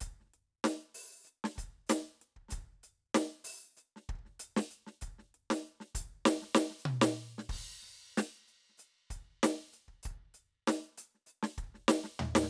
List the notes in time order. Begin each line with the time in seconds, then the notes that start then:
0.01 closed hi-hat, kick
0.07 kick
0.20 snare
0.25 snare
0.34 closed hi-hat
0.64 closed hi-hat, snare
0.95 open hi-hat
1.24 closed hi-hat, hi-hat pedal
1.44 snare
1.56 closed hi-hat, kick, snare
1.66 kick
1.87 closed hi-hat, snare, hi-hat pedal
2.22 closed hi-hat
2.36 kick
2.49 closed hi-hat, kick, snare
2.54 snare
2.58 kick
2.61 kick
2.84 closed hi-hat
3.15 closed hi-hat, snare
3.45 open hi-hat
3.77 closed hi-hat, hi-hat pedal
3.96 snare
4.09 kick, closed hi-hat
4.15 kick
4.19 kick
4.26 snare
4.40 closed hi-hat
4.57 snare
4.71 closed hi-hat
4.87 snare
5.02 closed hi-hat, kick
5.10 kick
5.19 snare
5.35 closed hi-hat
5.51 snare
5.81 snare
5.95 closed hi-hat, kick
6.01 kick
6.05 kick
6.26 snare
6.42 snare
6.55 snare
6.71 snare
6.79 hi-hat pedal
6.86 mid tom
7.02 snare
7.38 snare
7.49 kick, snare, crash
7.56 kick
7.59 kick
7.82 snare
7.88 closed hi-hat
8.18 closed hi-hat, snare
8.48 closed hi-hat
8.70 snare
8.78 closed hi-hat, hi-hat pedal
9.11 closed hi-hat, kick
9.16 kick
9.43 open hi-hat, snare, hi-hat pedal
9.73 closed hi-hat
9.88 kick
10.03 open hi-hat, kick, hi-hat pedal
10.34 closed hi-hat
10.67 closed hi-hat, snare
10.98 open hi-hat
11.15 snare
11.27 closed hi-hat, hi-hat pedal
11.43 snare
11.58 kick, closed hi-hat
11.64 kick
11.67 kick
11.75 snare
11.88 snare
12.04 snare
12.20 floor tom
12.35 snare
12.43 snare